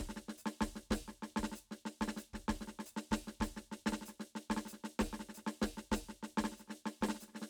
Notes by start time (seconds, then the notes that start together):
0.01 kick
0.09 snare
0.17 snare
0.29 snare
0.38 hi-hat pedal
0.46 snare
0.61 kick, snare
0.76 snare
0.91 kick, snare, hi-hat pedal
1.08 snare
1.23 snare
1.37 kick, snare
1.43 snare
1.52 snare, hi-hat pedal
1.71 snare
1.86 snare
2.01 kick, snare
2.08 snare
2.17 snare, hi-hat pedal
2.34 kick, snare
2.49 kick, snare
2.61 snare
2.68 snare
2.79 snare
2.86 hi-hat pedal
2.97 snare
3.11 kick, snare
3.28 snare
3.41 kick, snare, hi-hat pedal
3.57 snare
3.72 snare
3.86 kick, snare
3.93 snare
4.02 snare
4.06 snare, hi-hat pedal
4.20 snare
4.36 snare
4.50 kick, snare
4.57 snare
4.66 snare, hi-hat pedal
4.73 snare
4.84 snare
5.00 kick, snare
5.09 kick
5.13 snare
5.20 snare
5.29 snare
5.35 snare, hi-hat pedal
5.47 snare
5.62 kick, snare
5.78 snare
5.92 kick, snare, hi-hat pedal
6.09 snare
6.23 snare
6.38 kick, snare
6.44 snare
6.52 snare
6.58 snare, hi-hat pedal
6.68 snare
6.86 snare
7.02 kick, snare
7.09 snare
7.15 snare
7.21 snare, hi-hat pedal
7.29 snare
7.33 snare
7.35 snare
7.42 snare